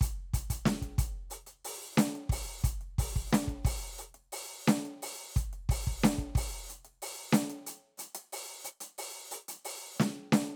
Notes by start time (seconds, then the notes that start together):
0.01 closed hi-hat, kick, hi-hat pedal
0.34 closed hi-hat, kick
0.50 closed hi-hat, kick
0.66 snare
0.82 kick, closed hi-hat
0.98 open hi-hat, kick
1.30 open hi-hat, hi-hat pedal
1.47 closed hi-hat
1.65 open hi-hat
1.95 closed hi-hat, snare, hi-hat pedal
2.15 closed hi-hat
2.30 open hi-hat, kick
2.61 closed hi-hat, kick, hi-hat pedal
2.81 closed hi-hat
2.99 open hi-hat, kick
3.16 kick
3.30 snare, hi-hat pedal
3.34 closed hi-hat
3.48 kick, closed hi-hat
3.64 open hi-hat, kick, hi-hat pedal
3.98 open hi-hat, hi-hat pedal
4.14 closed hi-hat
4.32 open hi-hat
4.67 closed hi-hat, snare, hi-hat pedal
4.85 closed hi-hat
5.03 open hi-hat
5.35 closed hi-hat, kick, hi-hat pedal
5.53 closed hi-hat
5.69 open hi-hat, kick
5.87 kick
6.02 closed hi-hat, snare, hi-hat pedal
6.18 kick, closed hi-hat
6.35 open hi-hat, kick, hi-hat pedal
6.68 closed hi-hat, hi-hat pedal
6.85 closed hi-hat
7.02 open hi-hat
7.32 closed hi-hat, snare, hi-hat pedal
7.50 closed hi-hat
7.67 open hi-hat
7.98 closed hi-hat, hi-hat pedal
8.15 closed hi-hat
8.33 open hi-hat
8.65 open hi-hat, hi-hat pedal
8.81 closed hi-hat
8.98 open hi-hat
9.31 open hi-hat, hi-hat pedal
9.48 closed hi-hat
9.65 open hi-hat
9.96 snare, hi-hat pedal
10.33 snare